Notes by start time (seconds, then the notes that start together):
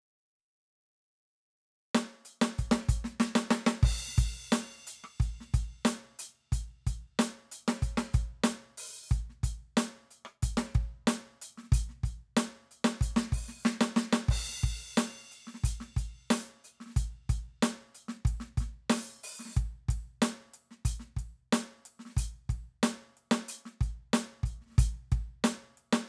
1.95 snare
2.25 closed hi-hat
2.41 snare
2.58 closed hi-hat, kick
2.71 snare
2.89 closed hi-hat, kick
3.04 snare
3.20 snare
3.35 snare
3.51 snare
3.66 snare
3.83 kick, crash
4.08 snare
4.18 closed hi-hat, kick
4.52 closed hi-hat, snare
4.87 closed hi-hat
5.04 cross-stick
5.20 closed hi-hat, kick
5.40 snare
5.54 closed hi-hat, kick
5.85 closed hi-hat, snare
6.19 closed hi-hat
6.52 closed hi-hat, kick
6.87 closed hi-hat, kick
7.19 closed hi-hat, snare
7.51 closed hi-hat
7.68 snare
7.82 closed hi-hat, kick
7.97 snare
8.14 closed hi-hat, kick
8.44 open hi-hat, snare
8.77 open hi-hat
9.09 closed hi-hat, kick, hi-hat pedal
9.29 snare
9.35 snare
9.43 closed hi-hat, kick
9.77 closed hi-hat, snare
10.11 closed hi-hat
10.25 cross-stick
10.42 closed hi-hat, kick
10.57 snare
10.70 snare
10.75 kick, closed hi-hat
11.07 closed hi-hat, snare
11.41 closed hi-hat
11.57 snare
11.63 snare
11.72 closed hi-hat, kick
11.89 snare
12.03 closed hi-hat, kick
12.37 closed hi-hat, snare
12.71 closed hi-hat
12.84 snare
13.01 closed hi-hat, kick
13.16 snare
13.30 open hi-hat, kick, snare
13.48 snare
13.63 snare, hi-hat pedal
13.81 snare
13.96 snare
14.13 snare
14.28 kick, crash
14.48 snare
14.61 kick, closed hi-hat
14.97 closed hi-hat, snare
15.31 closed hi-hat
15.47 snare
15.54 snare
15.64 closed hi-hat, kick
15.80 snare
15.96 closed hi-hat, kick
16.30 open hi-hat, snare
16.64 open hi-hat, hi-hat pedal
16.80 snare
16.86 snare
16.89 snare
16.96 closed hi-hat, kick
17.29 closed hi-hat, kick
17.62 closed hi-hat, snare
17.95 closed hi-hat
18.08 snare
18.25 kick, closed hi-hat
18.40 snare
18.57 closed hi-hat, kick, snare
18.90 open hi-hat, snare
18.96 snare
19.23 open hi-hat
19.39 snare
19.45 snare
19.48 snare
19.51 snare, hi-hat pedal
19.56 kick, closed hi-hat
19.88 kick, closed hi-hat
20.22 closed hi-hat, snare
20.54 closed hi-hat
20.71 snare
20.85 closed hi-hat, kick
20.99 snare
21.16 kick, closed hi-hat
21.52 closed hi-hat, snare
21.85 closed hi-hat
21.99 snare
22.05 snare
22.09 snare
22.17 closed hi-hat, kick
22.49 kick, closed hi-hat
22.83 closed hi-hat, snare
23.17 closed hi-hat
23.31 snare
23.48 closed hi-hat
23.65 snare
23.81 closed hi-hat, kick
24.13 closed hi-hat, snare
24.43 closed hi-hat, kick
24.61 snare
24.66 snare
24.69 snare
24.71 snare
24.73 snare
24.78 closed hi-hat, kick
25.12 kick, closed hi-hat
25.44 closed hi-hat, snare
25.51 snare
25.77 closed hi-hat
25.93 snare